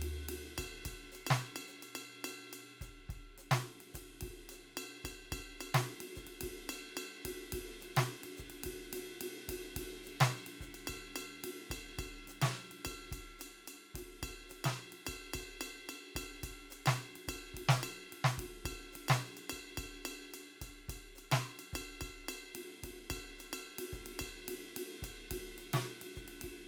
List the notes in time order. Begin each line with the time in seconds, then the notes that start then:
0.01 hi-hat pedal, ride
0.28 ride
0.58 kick, hi-hat pedal, ride bell
0.64 kick
0.85 kick, ride bell
0.94 kick
1.11 hi-hat pedal, ride bell
1.27 snare, ride bell
1.56 ride bell
1.68 hi-hat pedal
1.82 ride bell
1.95 ride bell
2.24 hi-hat pedal, ride bell
2.53 ride bell
2.81 kick, hi-hat pedal, ride bell
3.09 kick, ride bell
3.19 kick
3.38 hi-hat pedal, ride
3.51 snare, ride
3.80 ride
3.94 kick, hi-hat pedal, ride
4.21 kick, ride
4.28 kick
4.49 hi-hat pedal, ride bell
4.77 ride bell
5.04 kick, hi-hat pedal, ride bell
5.32 kick, ride bell
5.37 kick
5.60 hi-hat pedal, ride bell
5.74 snare, ride
6.00 ride
6.15 kick, hi-hat pedal
6.27 ride
6.41 kick, closed hi-hat, ride
6.69 hi-hat pedal, ride bell
6.97 ride bell
7.25 kick, hi-hat pedal, ride
7.52 kick, ride
7.58 kick
7.80 hi-hat pedal, ride
7.96 snare, ride
8.23 snare, ride
8.29 snare
8.37 kick, hi-hat pedal
8.50 ride
8.63 kick, ride
8.93 hi-hat pedal, ride
9.21 ride
9.48 kick, hi-hat pedal, ride
9.76 kick, ride
9.84 kick
10.03 hi-hat pedal, ride
10.20 snare, ride bell
10.46 ride
10.60 kick, hi-hat pedal
10.71 snare, ride bell
10.87 kick, ride bell
11.16 hi-hat pedal, ride bell
11.44 ride
11.70 kick, hi-hat pedal, ride bell
11.98 kick, ride bell
12.27 hi-hat pedal, ride
12.41 snare, ride bell
12.71 ride
12.85 kick, hi-hat pedal, ride bell
13.11 kick, ride bell
13.17 kick
13.39 hi-hat pedal, ride bell
13.67 ride bell
13.93 kick, snare, hi-hat pedal, ride
14.22 kick, ride bell
14.30 kick
14.49 hi-hat pedal, ride
14.64 snare, ride bell
14.92 ride
15.05 kick, hi-hat pedal, ride bell
15.33 kick, ride bell
15.61 hi-hat pedal, ride bell
15.89 ride bell
16.15 kick, hi-hat pedal, ride bell
16.43 kick, ride bell
16.52 kick
16.70 hi-hat pedal, ride bell
16.86 snare, ride bell
17.15 ride
17.27 kick, hi-hat pedal, ride bell
17.54 kick, ride
17.69 snare
17.80 hi-hat pedal, ride bell
18.12 ride
18.24 snare
18.38 kick, hi-hat pedal, ride
18.43 kick
18.46 kick
18.65 kick, ride bell
18.71 kick
18.74 kick
18.92 hi-hat pedal, ride
19.08 snare, ride bell
19.37 ride bell
19.49 kick, hi-hat pedal, ride bell
19.77 kick, ride bell
19.83 kick
20.05 hi-hat pedal, ride bell
20.34 ride bell
20.61 kick, hi-hat pedal, ride bell
20.88 kick, ride bell
20.97 kick
21.15 hi-hat pedal, ride bell
21.31 snare, ride bell
21.59 ride bell
21.73 kick, hi-hat pedal, ride bell
21.78 kick
22.01 kick, ride bell
22.09 kick
22.28 hi-hat pedal, ride bell
22.55 ride
22.83 kick, hi-hat pedal, ride
23.10 kick, ride bell
23.16 kick
23.38 hi-hat pedal, ride bell
23.53 ride bell
23.78 ride
23.92 kick, hi-hat pedal
24.06 ride
24.19 kick, ride bell
24.48 hi-hat pedal, ride
24.76 ride
25.02 kick, hi-hat pedal, ride bell
25.08 kick
25.31 kick, ride
25.39 kick
25.58 hi-hat pedal, ride
25.73 snare, ride
26.01 ride
26.16 kick, hi-hat pedal
26.28 ride
26.41 kick, ride